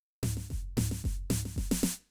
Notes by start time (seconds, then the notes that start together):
0.23 snare, floor tom
0.37 snare
0.50 kick, snare
0.77 snare, floor tom
0.91 snare
1.04 kick, snare
1.30 snare, floor tom
1.45 snare
1.56 kick, snare
1.71 snare
1.83 snare